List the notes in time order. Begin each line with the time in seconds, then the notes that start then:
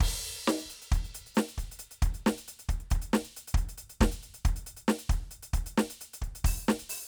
0.01 kick, crash
0.48 snare
0.59 closed hi-hat
0.66 kick
0.70 closed hi-hat
0.82 closed hi-hat
0.92 closed hi-hat, kick
1.05 closed hi-hat
1.27 closed hi-hat
1.35 snare, hi-hat pedal
1.49 closed hi-hat
1.58 closed hi-hat, kick
1.72 closed hi-hat
1.79 closed hi-hat
1.91 closed hi-hat
2.03 closed hi-hat, kick
2.15 closed hi-hat
2.27 snare
2.38 closed hi-hat
2.48 closed hi-hat
2.59 closed hi-hat
2.69 closed hi-hat, kick
2.81 closed hi-hat
2.91 closed hi-hat, kick
3.02 closed hi-hat
3.14 snare
3.25 closed hi-hat
3.37 closed hi-hat
3.48 closed hi-hat
3.55 closed hi-hat, kick
3.69 closed hi-hat
3.78 closed hi-hat
3.90 closed hi-hat
4.01 kick, snare
4.12 closed hi-hat
4.23 closed hi-hat
4.34 closed hi-hat
4.45 closed hi-hat, kick
4.56 closed hi-hat
4.67 closed hi-hat
4.77 closed hi-hat
4.89 snare
4.99 closed hi-hat
5.10 closed hi-hat, kick
5.31 closed hi-hat
5.43 closed hi-hat
5.54 closed hi-hat, kick
5.67 closed hi-hat
5.78 snare
5.90 closed hi-hat
6.01 closed hi-hat
6.14 closed hi-hat
6.22 kick, closed hi-hat
6.36 closed hi-hat
6.45 open hi-hat, kick
6.59 open hi-hat
6.65 hi-hat pedal
6.69 snare
6.80 closed hi-hat, kick
6.90 open hi-hat
7.03 open hi-hat